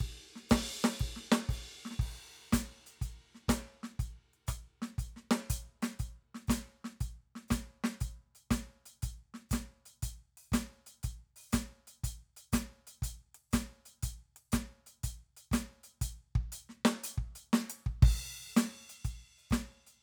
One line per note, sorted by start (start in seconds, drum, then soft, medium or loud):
0.01 kick medium
0.01 ride soft
0.36 snare soft
0.50 kick medium
0.50 snare loud
0.50 hi-hat pedal medium
0.50 ride loud
0.73 hi-hat pedal soft
0.84 snare loud
0.97 kick medium
0.97 hi-hat pedal soft
0.97 ride medium
1.16 snare soft
1.32 snare loud
1.49 kick medium
1.49 hi-hat pedal medium
1.49 ride medium
1.86 snare soft
1.91 snare soft
2.00 kick medium
2.00 crash medium
2.35 closed hi-hat soft
2.53 closed hi-hat loud
2.53 kick medium
2.53 snare loud
2.87 closed hi-hat soft
3.02 closed hi-hat medium
3.02 kick medium
3.35 snare soft
3.49 closed hi-hat loud
3.49 kick medium
3.49 snare loud
3.83 snare medium
4.00 closed hi-hat medium
4.00 kick medium
4.34 closed hi-hat soft
4.47 closed hi-hat medium
4.47 kick medium
4.47 cross-stick medium
4.47 hi-hat pedal soft
4.82 snare medium
4.98 closed hi-hat medium
4.98 kick medium
5.17 snare soft
5.31 snare loud
5.50 closed hi-hat loud
5.50 kick medium
5.83 closed hi-hat medium
5.83 snare medium
5.99 closed hi-hat medium
5.99 kick soft
6.35 snare soft
6.48 closed hi-hat loud
6.48 kick medium
6.48 snare loud
6.48 hi-hat pedal soft
6.85 snare medium
7.01 closed hi-hat medium
7.01 kick medium
7.36 snare soft
7.48 closed hi-hat medium
7.48 kick medium
7.48 snare loud
7.48 hi-hat pedal soft
7.84 snare medium
8.01 closed hi-hat medium
8.01 kick medium
8.35 open hi-hat soft
8.51 closed hi-hat medium
8.51 kick medium
8.51 snare loud
8.86 closed hi-hat medium
9.03 closed hi-hat medium
9.03 kick medium
9.34 snare soft
9.49 closed hi-hat loud
9.49 kick medium
9.49 snare medium
9.49 hi-hat pedal soft
9.86 closed hi-hat medium
10.03 closed hi-hat loud
10.03 kick soft
10.38 open hi-hat soft
10.52 closed hi-hat loud
10.52 kick medium
10.52 snare loud
10.87 closed hi-hat medium
11.03 closed hi-hat medium
11.03 kick medium
11.36 open hi-hat medium
11.50 closed hi-hat loud
11.50 kick medium
11.50 snare loud
11.50 hi-hat pedal soft
11.88 closed hi-hat medium
12.04 closed hi-hat loud
12.04 kick medium
12.37 open hi-hat medium
12.53 open hi-hat loud
12.53 kick medium
12.53 snare loud
12.53 hi-hat pedal soft
12.87 closed hi-hat medium
13.03 closed hi-hat loud
13.03 kick medium
13.35 closed hi-hat soft
13.51 closed hi-hat loud
13.51 kick medium
13.51 snare loud
13.51 hi-hat pedal soft
13.86 closed hi-hat medium
14.03 closed hi-hat loud
14.03 kick medium
14.36 closed hi-hat soft
14.52 open hi-hat loud
14.52 kick medium
14.52 snare loud
14.52 hi-hat pedal medium
14.87 closed hi-hat soft
15.04 closed hi-hat loud
15.04 kick soft
15.37 closed hi-hat medium
15.52 open hi-hat loud
15.52 kick medium
15.52 snare loud
15.52 hi-hat pedal soft
15.84 closed hi-hat soft
16.02 closed hi-hat loud
16.02 kick medium
16.36 kick medium
16.52 closed hi-hat medium
16.69 snare soft
16.85 snare loud
17.04 closed hi-hat loud
17.18 kick medium
17.36 closed hi-hat medium
17.53 snare loud
17.70 closed hi-hat loud
17.86 kick medium
18.03 kick loud
18.03 crash medium
18.57 closed hi-hat loud
18.57 snare loud
18.90 closed hi-hat medium
19.05 closed hi-hat medium
19.05 kick medium
19.38 open hi-hat soft
19.50 closed hi-hat medium
19.50 kick medium
19.50 snare loud
19.50 hi-hat pedal soft
19.87 closed hi-hat soft